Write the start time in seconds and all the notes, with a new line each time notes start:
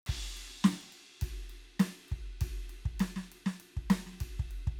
0.07 kick, ride
0.24 ride
0.38 ride
0.64 snare, ride
0.82 ride
0.93 ride
1.22 kick, ride
1.50 ride
1.80 snare, ride
2.09 kick, ride
2.41 kick, ride
2.70 ride
2.86 kick
3.00 snare, ride
3.17 snare
3.32 ride
3.46 snare
3.60 ride
3.77 kick
3.91 snare, ride
4.07 snare
4.13 snare
4.21 kick, ride
4.40 kick
4.51 ride
4.67 kick